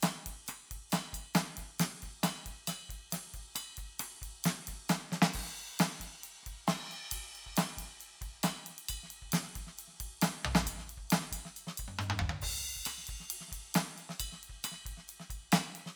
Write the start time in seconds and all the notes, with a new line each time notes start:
0.01 snare, hi-hat pedal, ride bell
0.16 snare
0.26 kick, ride
0.32 kick
0.47 cross-stick, hi-hat pedal, ride bell
0.71 kick, ride
0.77 kick
0.90 snare, hi-hat pedal, ride bell
1.13 kick, ride bell
1.19 kick
1.34 snare, hi-hat pedal, ride
1.49 snare
1.57 kick, ride
1.64 kick
1.79 snare, hi-hat pedal, ride
2.03 kick, ride
2.09 kick
2.24 snare, hi-hat pedal, ride bell
2.46 kick, ride
2.52 kick
2.67 snare, hi-hat pedal, ride bell
2.90 kick, ride
2.96 kick
3.11 snare, hi-hat pedal, ride
3.34 kick, ride
3.40 kick
3.55 cross-stick, hi-hat pedal, ride bell
3.77 kick, ride
3.84 kick
3.99 cross-stick, hi-hat pedal, ride
4.22 kick, ride
4.28 kick
4.44 snare, hi-hat pedal, ride
4.68 kick, ride
4.74 kick
4.89 snare, hi-hat pedal, ride bell
5.12 snare
5.22 snare
5.33 kick, snare, hi-hat pedal, crash
5.42 kick
5.50 snare
5.80 snare, hi-hat pedal, ride
5.92 snare
6.00 kick, ride
6.13 snare
6.18 snare
6.24 hi-hat pedal, ride
6.43 kick, cross-stick, ride
6.52 kick
6.68 snare, hi-hat pedal, ride
6.80 snare
6.92 ride
7.10 kick, snare, hi-hat pedal, ride
7.18 kick
7.36 ride
7.47 kick
7.56 snare, hi-hat pedal, ride
7.78 kick, ride
7.83 kick
8.00 hi-hat pedal, ride
8.16 snare
8.22 kick, ride
8.29 kick
8.44 snare, hi-hat pedal, ride bell
8.57 snare
8.67 snare, ride
8.79 ride
8.89 kick, hi-hat pedal, ride bell
8.96 kick
9.04 snare
9.08 snare, ride
9.22 kick
9.33 snare, hi-hat pedal, ride
9.43 snare
9.56 kick, ride
9.62 kick
9.67 snare
9.78 hi-hat pedal, ride
9.88 snare
9.94 snare
10.01 kick, ride
10.22 snare, hi-hat pedal, ride
10.45 floor tom
10.55 snare
10.66 kick, hi-hat pedal, ride bell
10.72 kick
10.79 snare
10.86 snare, ride
10.98 kick
11.10 snare, hi-hat pedal, ride
11.21 snare
11.32 kick, ride bell
11.39 kick
11.46 snare
11.56 hi-hat pedal, ride bell
11.67 snare
11.78 kick, ride bell
11.86 kick, high tom
11.99 hi-hat pedal, high tom
12.10 high tom
12.20 kick, mid tom
12.30 mid tom
12.42 kick, hi-hat pedal, crash
12.77 kick
12.82 kick
12.86 cross-stick, hi-hat pedal, ride bell
12.98 snare
13.07 kick, ride
13.15 kick
13.20 snare
13.30 hi-hat pedal, ride
13.41 snare
13.49 kick, snare
13.53 ride
13.58 kick
13.75 snare, hi-hat pedal, ride
13.98 ride
14.10 snare
14.20 kick, hi-hat pedal, ride bell
14.27 kick
14.33 snare
14.44 ride
14.50 kick
14.55 kick
14.64 cross-stick, hi-hat pedal, ride bell
14.72 snare
14.86 kick, ride
14.92 kick
14.98 snare
15.08 hi-hat pedal, ride
15.20 snare
15.30 kick, ride bell
15.52 snare, hi-hat pedal, ride bell
15.76 ride
15.86 snare